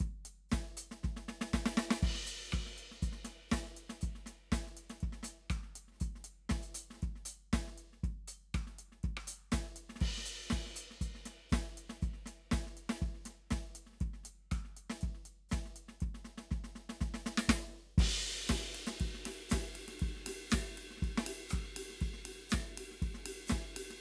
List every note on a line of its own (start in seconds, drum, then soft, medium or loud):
0.01 kick medium
0.01 closed hi-hat medium
0.26 open hi-hat medium
0.50 kick medium
0.50 snare medium
0.50 closed hi-hat medium
0.50 hi-hat pedal soft
0.67 snare soft
0.78 closed hi-hat medium
0.92 snare soft
1.04 kick medium
1.04 snare soft
1.17 snare soft
1.29 snare medium
1.42 snare medium
1.54 kick medium
1.54 snare medium
1.66 snare medium
1.78 snare loud
1.91 snare loud
2.04 kick medium
2.04 crash loud
2.15 snare soft
2.26 open hi-hat medium
2.26 snare soft
2.50 cross-stick medium
2.50 hi-hat pedal soft
2.54 kick medium
2.54 closed hi-hat medium
2.67 snare soft
2.79 closed hi-hat medium
2.92 snare soft
3.03 closed hi-hat soft
3.03 kick medium
3.13 snare soft
3.25 snare soft
3.25 open hi-hat medium
3.50 kick soft
3.50 snare loud
3.50 closed hi-hat medium
3.50 hi-hat pedal soft
3.66 snare soft
3.77 closed hi-hat medium
3.90 snare medium
3.90 closed hi-hat soft
4.02 closed hi-hat medium
4.02 kick medium
4.16 snare soft
4.27 snare soft
4.27 closed hi-hat medium
4.53 closed hi-hat medium
4.53 kick medium
4.53 snare medium
4.68 snare soft
4.78 closed hi-hat medium
4.91 snare soft
4.91 closed hi-hat soft
5.01 kick medium
5.01 closed hi-hat soft
5.13 snare soft
5.24 closed hi-hat medium
5.24 snare soft
5.51 kick medium
5.51 cross-stick medium
5.51 closed hi-hat medium
5.64 snare soft
5.76 closed hi-hat medium
5.89 snare soft
5.93 snare soft
5.95 snare soft
6.01 closed hi-hat soft
6.01 kick medium
6.16 snare soft
6.25 closed hi-hat medium
6.50 kick medium
6.50 snare medium
6.50 closed hi-hat soft
6.63 closed hi-hat soft
6.63 snare soft
6.75 open hi-hat medium
6.91 snare soft
6.95 snare soft
7.03 kick medium
7.03 closed hi-hat soft
7.16 snare soft
7.26 closed hi-hat medium
7.54 kick medium
7.54 snare medium
7.54 closed hi-hat medium
7.68 snare soft
7.79 closed hi-hat medium
7.94 snare soft
8.04 kick medium
8.04 closed hi-hat soft
8.29 open hi-hat medium
8.55 kick medium
8.55 cross-stick medium
8.55 closed hi-hat medium
8.68 snare soft
8.71 snare soft
8.79 closed hi-hat medium
8.93 snare soft
9.04 kick medium
9.04 closed hi-hat soft
9.18 cross-stick medium
9.28 closed hi-hat medium
9.53 closed hi-hat medium
9.53 kick medium
9.53 snare medium
9.67 snare soft
9.77 closed hi-hat medium
9.90 snare soft
9.97 snare soft
10.00 kick medium
10.00 snare soft
10.00 crash loud
10.18 snare soft
10.26 closed hi-hat medium
10.51 kick medium
10.51 snare medium
10.51 closed hi-hat soft
10.67 snare soft
10.77 closed hi-hat medium
10.92 snare soft
11.02 closed hi-hat soft
11.02 kick soft
11.16 snare soft
11.26 snare soft
11.26 open hi-hat medium
11.50 kick medium
11.50 snare medium
11.50 closed hi-hat soft
11.50 hi-hat pedal soft
11.69 snare soft
11.78 closed hi-hat medium
11.90 snare soft
12.03 closed hi-hat soft
12.03 kick medium
12.14 snare soft
12.27 snare soft
12.27 closed hi-hat medium
12.52 closed hi-hat soft
12.52 kick medium
12.52 snare medium
12.67 snare soft
12.78 closed hi-hat medium
12.90 snare medium
13.01 kick medium
13.01 closed hi-hat soft
13.15 snare soft
13.26 snare soft
13.26 closed hi-hat medium
13.51 kick medium
13.51 snare medium
13.51 closed hi-hat soft
13.76 closed hi-hat medium
13.87 snare soft
13.91 snare soft
13.94 snare soft
14.01 kick medium
14.01 closed hi-hat soft
14.14 snare soft
14.24 snare soft
14.24 closed hi-hat medium
14.52 kick medium
14.52 cross-stick medium
14.52 closed hi-hat medium
14.66 snare soft
14.78 closed hi-hat medium
14.91 snare medium
15.02 kick medium
15.02 closed hi-hat medium
15.15 snare soft
15.26 open hi-hat medium
15.50 kick medium
15.50 snare medium
15.50 closed hi-hat medium
15.50 hi-hat pedal soft
15.66 snare soft
15.77 closed hi-hat medium
15.89 snare soft
16.01 kick medium
16.01 closed hi-hat soft
16.15 snare soft
16.25 snare soft
16.38 snare soft
16.52 kick medium
16.52 snare soft
16.65 snare soft
16.76 snare soft
16.90 snare medium
17.02 kick medium
17.02 snare soft
17.15 snare medium
17.27 snare medium
17.38 snare loud
17.50 kick medium
17.50 snare loud
17.99 kick medium
17.99 crash loud
17.99 ride loud
18.24 ride medium
18.48 kick medium
18.48 snare medium
18.48 hi-hat pedal medium
18.48 ride loud
18.64 snare soft
18.76 ride medium
18.88 snare medium
18.88 ride medium
19.01 kick medium
19.01 ride medium
19.15 snare soft
19.26 snare soft
19.26 ride loud
19.50 kick medium
19.50 snare medium
19.50 hi-hat pedal loud
19.50 ride loud
19.63 snare soft
19.76 ride medium
19.89 snare soft
19.89 ride medium
20.00 kick medium
20.00 ride medium
20.17 snare soft
20.27 snare soft
20.27 ride loud
20.51 kick medium
20.51 snare loud
20.51 hi-hat pedal loud
20.51 ride loud
20.67 snare soft
20.78 ride medium
20.91 snare soft
20.98 snare soft
21.03 kick medium
21.03 ride soft
21.18 snare medium
21.27 ride loud
21.50 cross-stick medium
21.50 hi-hat pedal loud
21.50 ride medium
21.54 kick medium
21.65 snare soft
21.77 ride loud
21.91 snare soft
22.02 kick medium
22.02 ride medium
22.14 snare soft
22.26 ride loud
22.50 snare medium
22.50 hi-hat pedal loud
22.50 ride medium
22.55 kick medium
22.78 ride loud
22.92 snare soft
23.03 kick medium
23.03 ride soft
23.15 snare soft
23.27 ride loud
23.48 snare medium
23.48 hi-hat pedal loud
23.48 ride medium
23.53 kick medium
23.77 ride loud
23.91 snare soft
23.91 ride medium